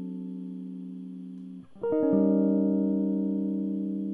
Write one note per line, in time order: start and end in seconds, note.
1.84 4.15 A#4
1.93 4.15 D#4
2.03 4.15 C#4
2.14 4.15 G3